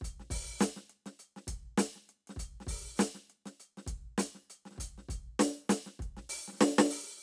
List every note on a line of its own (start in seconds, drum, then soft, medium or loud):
0.01 closed hi-hat medium
0.01 kick medium
0.20 snare soft
0.30 open hi-hat loud
0.30 kick medium
0.59 closed hi-hat loud
0.59 snare loud
0.59 hi-hat pedal medium
0.76 snare soft
0.89 closed hi-hat soft
1.06 snare soft
1.06 closed hi-hat soft
1.19 closed hi-hat medium
1.36 snare soft
1.47 kick medium
1.47 closed hi-hat medium
1.78 closed hi-hat loud
1.78 snare loud
1.96 snare soft
2.09 closed hi-hat soft
2.27 snare soft
2.27 closed hi-hat soft
2.36 closed hi-hat medium
2.36 kick medium
2.60 snare soft
2.67 open hi-hat loud
2.67 kick medium
2.97 closed hi-hat loud
2.97 snare loud
2.97 hi-hat pedal medium
3.14 snare soft
3.30 closed hi-hat soft
3.46 snare soft
3.46 closed hi-hat soft
3.60 closed hi-hat medium
3.77 snare soft
3.86 kick medium
3.86 closed hi-hat medium
4.18 closed hi-hat loud
4.18 snare loud
4.34 snare soft
4.50 closed hi-hat medium
4.65 snare soft
4.71 snare soft
4.75 kick soft
4.75 snare soft
4.79 closed hi-hat medium
4.79 snare soft
4.98 snare soft
5.08 closed hi-hat medium
5.08 kick medium
5.39 closed hi-hat loud
5.39 snare loud
5.69 closed hi-hat loud
5.69 snare loud
5.86 snare soft
5.99 kick medium
5.99 closed hi-hat soft
6.17 snare soft
6.29 open hi-hat loud
6.48 snare soft
6.53 snare soft
6.53 hi-hat pedal soft
6.57 snare soft
6.61 snare loud
6.78 snare loud
6.90 open hi-hat loud